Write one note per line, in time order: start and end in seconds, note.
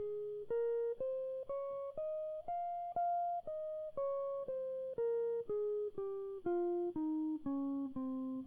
0.00 0.47 G#4
0.51 0.95 A#4
1.01 1.46 C5
1.50 1.94 C#5
1.98 2.48 D#5
2.49 2.96 F5
2.97 3.43 F5
3.48 3.93 D#5
3.98 4.47 C#5
4.49 4.97 C5
4.99 5.44 A#4
5.50 5.92 G#4
5.99 6.42 G4
6.47 6.93 F4
6.97 7.40 D#4
7.47 7.92 C#4
7.97 8.46 C4